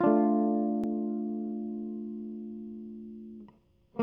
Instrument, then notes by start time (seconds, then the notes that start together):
electric guitar
0.00 D4 F4
0.06 A3